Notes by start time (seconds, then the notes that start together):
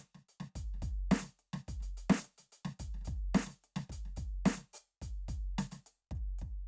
0.01 closed hi-hat
0.15 snare
0.29 closed hi-hat
0.41 snare
0.56 closed hi-hat, kick
0.74 snare
0.80 closed hi-hat, kick, snare
0.89 kick
0.91 kick
1.12 closed hi-hat, snare
1.23 snare
1.27 closed hi-hat
1.40 closed hi-hat
1.54 snare
1.67 closed hi-hat, kick, snare
1.81 closed hi-hat, snare
1.86 snare
1.98 closed hi-hat
2.10 snare
2.19 snare, hi-hat pedal
2.25 closed hi-hat
2.38 closed hi-hat, snare
2.53 closed hi-hat
2.65 snare
2.80 closed hi-hat, kick
2.86 kick
2.95 snare
3.02 closed hi-hat, snare
3.08 kick
3.14 kick
3.17 kick
3.35 closed hi-hat, snare
3.47 closed hi-hat, snare
3.64 closed hi-hat
3.77 snare
3.90 closed hi-hat, kick
4.06 snare
4.17 closed hi-hat, kick
4.26 kick
4.46 closed hi-hat, snare
4.58 snare
4.74 open hi-hat, hi-hat pedal
5.02 closed hi-hat, kick
5.29 closed hi-hat, kick
5.35 kick
5.37 kick
5.59 closed hi-hat, snare
5.72 closed hi-hat, snare
5.87 closed hi-hat
6.12 kick
6.16 kick, closed hi-hat
6.39 kick, closed hi-hat